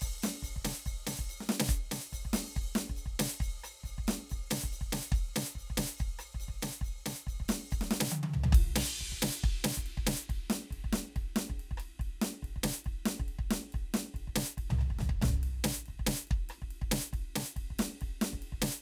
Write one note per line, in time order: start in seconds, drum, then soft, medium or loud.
0.01 kick soft
0.01 percussion loud
0.23 snare loud
0.23 percussion loud
0.43 kick soft
0.43 percussion medium
0.56 kick soft
0.65 snare loud
0.65 percussion loud
0.86 kick soft
0.86 percussion medium
1.07 snare medium
1.07 percussion loud
1.19 kick soft
1.30 percussion medium
1.41 snare medium
1.49 snare loud
1.60 snare loud
1.69 kick medium
1.69 percussion medium
1.92 snare medium
1.92 percussion loud
2.11 kick soft
2.11 snare soft
2.11 percussion medium
2.25 kick soft
2.33 snare loud
2.33 percussion loud
2.53 kick medium
2.53 snare soft
2.53 percussion medium
2.75 snare loud
2.75 percussion medium
2.90 kick soft
2.97 percussion medium
3.06 kick soft
3.19 snare loud
3.19 percussion loud
3.40 kick medium
3.40 percussion medium
3.64 cross-stick medium
3.64 percussion medium
3.84 kick soft
3.84 snare soft
3.84 percussion medium
3.98 kick soft
4.07 snare loud
4.07 percussion medium
4.26 snare soft
4.26 percussion medium
4.32 kick soft
4.51 snare loud
4.51 percussion loud
4.64 kick soft
4.64 snare soft
4.72 percussion medium
4.81 kick soft
4.93 snare loud
4.93 percussion medium
5.12 kick medium
5.12 snare soft
5.12 percussion medium
5.36 snare loud
5.36 percussion medium
5.55 kick soft
5.55 percussion medium
5.70 kick soft
5.77 snare loud
5.77 percussion medium
5.98 kick medium
5.98 percussion medium
6.19 cross-stick medium
6.19 percussion medium
6.35 kick soft
6.40 percussion medium
6.48 kick soft
6.62 snare loud
6.62 percussion medium
6.81 kick soft
6.81 percussion medium
7.06 snare medium
7.06 percussion medium
7.27 kick soft
7.27 percussion medium
7.40 kick soft
7.48 snare loud
7.48 percussion loud
7.71 kick medium
7.71 percussion medium
7.81 snare medium
7.91 snare loud
8.01 snare loud
8.12 high tom loud
8.23 high tom loud
8.34 floor tom loud
8.44 floor tom loud
8.53 kick loud
8.53 ride loud
8.76 snare loud
8.76 crash loud
9.01 kick soft
9.12 kick soft
9.22 snare loud
9.22 ride loud
9.36 snare soft
9.44 kick medium
9.44 ride soft
9.64 snare loud
9.64 ride medium
9.77 kick medium
9.77 snare soft
9.86 ride medium
9.97 kick medium
10.07 snare loud
10.07 ride medium
10.29 kick medium
10.29 snare soft
10.29 ride medium
10.50 snare loud
10.50 ride medium
10.71 kick soft
10.71 snare soft
10.71 ride medium
10.84 kick soft
10.93 snare loud
10.93 ride medium
11.14 kick medium
11.14 snare soft
11.14 ride soft
11.36 snare loud
11.36 ride medium
11.50 kick soft
11.50 snare soft
11.60 ride soft
11.71 kick soft
11.78 cross-stick medium
11.78 ride medium
12.00 kick soft
12.00 snare soft
12.00 ride soft
12.22 snare loud
12.22 ride medium
12.36 snare soft
12.43 kick soft
12.43 ride soft
12.56 kick soft
12.64 snare loud
12.64 ride medium
12.79 snare soft
12.85 kick soft
12.85 ride soft
13.06 snare loud
13.06 ride medium
13.20 kick medium
13.20 snare soft
13.28 ride soft
13.39 kick medium
13.51 snare loud
13.51 ride medium
13.70 snare soft
13.70 ride soft
13.74 kick medium
13.94 snare loud
13.94 ride medium
14.10 snare soft
14.14 kick soft
14.14 ride soft
14.28 kick soft
14.36 snare loud
14.36 ride medium
14.58 kick soft
14.58 ride medium
14.70 snare medium
14.70 floor tom loud
14.79 cross-stick medium
14.79 floor tom medium
14.90 kick soft
14.99 snare medium
14.99 floor tom loud
15.09 kick medium
15.22 snare loud
15.22 floor tom loud
15.28 kick medium
15.43 ride medium
15.64 snare loud
15.64 ride medium
15.86 kick soft
15.86 ride soft
16.00 kick soft
16.07 snare loud
16.07 ride medium
16.26 snare soft
16.26 ride soft
16.31 kick medium
16.49 cross-stick medium
16.49 ride medium
16.58 snare soft
16.62 kick soft
16.62 snare soft
16.71 ride medium
16.82 kick medium
16.92 snare loud
16.92 ride medium
17.11 kick medium
17.11 snare soft
17.11 ride medium
17.36 snare loud
17.36 ride medium
17.50 snare soft
17.54 kick soft
17.54 snare soft
17.54 ride medium
17.71 kick soft
17.79 snare loud
17.79 ride medium
18.01 kick soft
18.01 ride medium
18.22 snare loud
18.22 ride medium
18.33 kick soft
18.33 snare soft
18.42 ride medium
18.52 kick soft
18.62 snare loud
18.62 ride medium